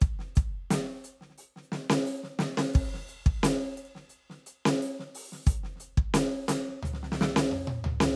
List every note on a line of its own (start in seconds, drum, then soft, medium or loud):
0.01 closed hi-hat soft
0.01 kick loud
0.19 snare soft
0.36 closed hi-hat medium
0.36 kick loud
0.71 closed hi-hat loud
0.71 snare loud
0.96 snare soft
0.96 hi-hat pedal soft
1.04 closed hi-hat medium
1.21 snare soft
1.30 snare soft
1.38 open hi-hat medium
1.38 hi-hat pedal soft
1.56 snare soft
1.63 hi-hat pedal soft
1.72 snare medium
1.90 snare loud
2.05 open hi-hat medium
2.15 hi-hat pedal soft
2.24 snare soft
2.39 snare loud
2.39 hi-hat pedal soft
2.58 snare loud
2.74 kick loud
2.74 crash medium
2.85 hi-hat pedal soft
2.94 snare soft
3.09 closed hi-hat medium
3.26 kick loud
3.43 closed hi-hat loud
3.43 snare loud
3.63 hi-hat pedal soft
3.77 closed hi-hat medium
3.85 closed hi-hat soft
3.95 snare soft
4.10 closed hi-hat medium
4.30 snare soft
4.46 closed hi-hat medium
4.66 snare loud
4.83 open hi-hat medium
4.87 hi-hat pedal soft
5.00 snare soft
5.15 open hi-hat medium
5.32 snare soft
5.47 open hi-hat medium
5.47 kick loud
5.64 snare soft
5.76 snare soft
5.80 closed hi-hat medium
5.98 kick loud
6.14 closed hi-hat loud
6.14 snare loud
6.46 closed hi-hat loud
6.46 snare loud
6.46 hi-hat pedal soft
6.68 snare soft
6.83 floor tom loud
6.83 hi-hat pedal medium
6.94 snare soft
7.03 snare medium
7.12 snare medium
7.21 snare loud
7.36 snare loud
7.51 mid tom medium
7.67 high tom loud
7.84 floor tom loud
8.01 snare loud